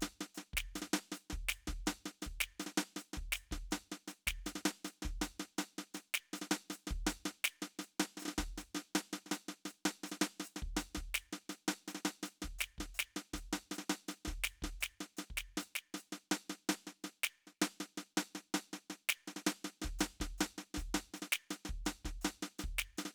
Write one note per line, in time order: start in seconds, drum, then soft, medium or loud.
0.01 snare medium
0.01 hi-hat pedal soft
0.21 snare soft
0.35 snare soft
0.35 hi-hat pedal soft
0.54 kick soft
0.54 snare medium
0.76 snare soft
0.76 hi-hat pedal soft
0.82 snare soft
0.94 snare medium
1.12 snare soft
1.12 hi-hat pedal soft
1.30 kick soft
1.30 snare soft
1.49 snare medium
1.49 hi-hat pedal soft
1.68 kick soft
1.68 snare soft
1.87 snare medium
1.87 hi-hat pedal soft
2.06 snare soft
2.22 snare soft
2.22 hi-hat pedal soft
2.27 kick soft
2.41 snare medium
2.60 snare soft
2.60 hi-hat pedal soft
2.67 snare soft
2.78 snare medium
2.96 snare soft
2.96 hi-hat pedal soft
3.14 kick soft
3.14 snare soft
3.33 snare medium
3.33 hi-hat pedal soft
3.52 kick soft
3.52 snare soft
3.71 snare medium
3.71 hi-hat pedal soft
3.92 snare soft
4.08 snare soft
4.08 hi-hat pedal soft
4.27 kick soft
4.27 snare medium
4.46 snare soft
4.46 hi-hat pedal soft
4.56 snare soft
4.66 snare medium
4.85 snare soft
4.85 hi-hat pedal soft
5.02 kick soft
5.02 snare soft
5.05 snare soft
5.22 snare medium
5.22 hi-hat pedal soft
5.40 snare soft
5.58 snare medium
5.58 hi-hat pedal soft
5.78 snare soft
5.94 snare soft
5.94 hi-hat pedal soft
6.14 snare medium
6.33 snare soft
6.33 hi-hat pedal soft
6.42 snare soft
6.51 snare medium
6.70 snare soft
6.70 hi-hat pedal soft
6.87 kick soft
6.87 snare soft
7.07 snare medium
7.07 hi-hat pedal soft
7.26 snare medium
7.45 snare medium
7.45 hi-hat pedal soft
7.62 snare soft
7.79 snare soft
7.79 hi-hat pedal soft
8.00 snare medium
8.17 snare soft
8.17 hi-hat pedal soft
8.22 snare soft
8.26 snare soft
8.28 snare soft
8.38 kick soft
8.38 snare medium
8.58 snare soft
8.58 hi-hat pedal soft
8.75 snare soft
8.77 snare soft
8.95 snare medium
8.95 hi-hat pedal soft
9.13 snare soft
9.26 snare soft
9.32 snare medium
9.32 hi-hat pedal soft
9.49 snare soft
9.66 snare soft
9.66 hi-hat pedal soft
9.86 snare medium
10.04 snare soft
10.04 hi-hat pedal soft
10.12 snare soft
10.22 snare medium
10.40 snare soft
10.44 hi-hat pedal soft
10.56 snare soft
10.62 kick soft
10.77 snare medium
10.77 hi-hat pedal soft
10.95 kick soft
10.95 snare soft
11.15 snare medium
11.15 hi-hat pedal soft
11.33 snare soft
11.50 snare soft
11.50 hi-hat pedal soft
11.68 snare medium
11.88 snare soft
11.88 hi-hat pedal soft
11.95 snare soft
12.05 snare medium
12.23 snare soft
12.23 hi-hat pedal soft
12.42 kick soft
12.42 snare soft
12.59 snare medium
12.59 hi-hat pedal soft
12.78 kick soft
12.78 snare soft
12.95 hi-hat pedal soft
12.99 snare medium
13.17 snare soft
13.34 kick soft
13.34 snare soft
13.34 hi-hat pedal soft
13.53 snare medium
13.71 snare soft
13.71 hi-hat pedal soft
13.79 snare soft
13.90 snare medium
14.08 snare soft
14.08 hi-hat pedal soft
14.25 kick soft
14.25 snare soft
14.28 snare soft
14.44 snare medium
14.44 hi-hat pedal soft
14.63 kick soft
14.63 snare soft
14.81 snare medium
14.81 hi-hat pedal soft
15.01 snare soft
15.17 snare soft
15.17 hi-hat pedal soft
15.31 kick soft
15.38 snare medium
15.57 snare medium
15.57 hi-hat pedal soft
15.76 snare soft
15.94 snare soft
15.94 hi-hat pedal soft
16.13 snare soft
16.32 snare medium
16.50 snare soft
16.69 snare medium
16.87 snare soft
17.04 snare soft
17.04 hi-hat pedal soft
17.24 snare medium
17.47 snare soft
17.62 snare medium
17.80 snare soft
17.98 snare soft
18.18 snare medium
18.35 snare soft
18.54 snare medium
18.73 snare soft
18.90 snare soft
19.09 snare medium
19.28 snare soft
19.36 snare soft
19.47 snare medium
19.65 snare soft
19.82 snare soft
19.84 kick soft
19.84 snare soft
19.99 snare medium
19.99 hi-hat pedal soft
20.21 kick soft
20.21 snare soft
20.38 snare medium
20.38 hi-hat pedal soft
20.58 snare soft
20.75 snare soft
20.76 kick soft
20.76 snare soft
20.76 hi-hat pedal soft
20.95 snare medium
21.14 snare soft
21.14 hi-hat pedal soft
21.22 snare soft
21.33 snare medium
21.51 snare soft
21.51 hi-hat pedal soft
21.65 snare soft
21.70 kick soft
21.86 snare medium
21.86 hi-hat pedal soft
22.05 kick soft
22.05 snare soft
22.22 snare medium
22.22 hi-hat pedal soft
22.43 snare soft
22.59 snare soft
22.59 hi-hat pedal soft
22.64 kick soft
22.79 snare medium
22.98 snare soft
22.98 hi-hat pedal soft
23.05 snare soft